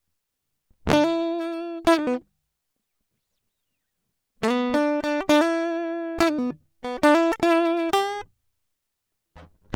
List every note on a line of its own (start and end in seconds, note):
0.88 1.03 G2
0.93 1.83 E4
1.88 1.97 E4
1.99 2.05 D4
2.08 2.27 B3
4.44 4.85 B3
4.75 5.03 D4
5.05 5.26 D4
5.30 5.42 D4
5.42 6.19 E4
6.21 6.30 E4
6.39 6.51 B3
6.51 6.59 D#4
6.85 7.02 B3
7.04 7.14 D4
7.15 7.37 E4
7.44 7.94 E4
7.94 8.25 G4